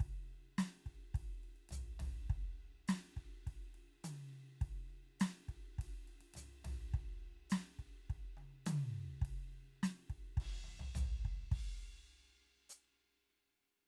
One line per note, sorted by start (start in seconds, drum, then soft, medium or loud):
0.01 kick soft
0.01 ride soft
0.59 snare medium
0.59 hi-hat pedal medium
0.59 ride medium
0.87 kick soft
0.87 ride soft
1.15 kick soft
1.15 ride soft
1.44 ride soft
1.57 ride soft
1.70 floor tom medium
1.70 hi-hat pedal medium
1.70 ride medium
2.00 floor tom medium
2.00 ride medium
2.31 kick soft
2.31 ride soft
2.89 snare medium
2.89 hi-hat pedal medium
2.89 ride medium
3.18 kick soft
3.18 ride soft
3.48 kick soft
3.48 ride soft
3.75 high tom soft
3.75 ride soft
4.05 hi-hat pedal medium
4.05 high tom medium
4.05 ride medium
4.30 ride soft
4.62 kick soft
4.62 ride soft
5.21 snare medium
5.21 hi-hat pedal medium
5.21 ride medium
5.49 kick soft
5.49 ride soft
5.79 kick soft
5.79 ride medium
6.09 ride soft
6.22 ride soft
6.35 floor tom soft
6.35 hi-hat pedal medium
6.35 ride medium
6.66 floor tom medium
6.66 ride medium
6.95 kick soft
6.95 ride soft
7.51 snare medium
7.51 hi-hat pedal medium
7.51 ride medium
7.80 kick soft
7.80 ride soft
8.11 kick soft
8.11 ride soft
8.38 high tom soft
8.38 ride soft
8.67 hi-hat pedal medium
8.67 high tom loud
8.67 ride medium
9.22 kick soft
9.22 ride medium
9.84 snare medium
9.84 hi-hat pedal medium
9.84 ride medium
10.11 kick soft
10.11 ride soft
10.38 kick soft
10.38 ride medium
10.55 floor tom soft
10.65 floor tom soft
10.80 floor tom medium
10.96 floor tom medium
10.96 hi-hat pedal medium
11.26 kick soft
11.53 kick soft
11.53 crash soft
12.71 hi-hat pedal medium